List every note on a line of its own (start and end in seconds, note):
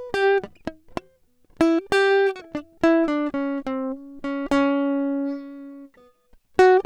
0.16 0.44 G4
1.62 1.83 E4
1.94 2.37 G4
2.38 2.50 F#4
2.85 3.14 E4
3.10 3.33 D4
3.36 3.65 C#4
3.68 3.94 C4
3.94 4.22 C#4
4.26 4.49 C#4
4.53 5.40 C#4
6.61 6.83 F#4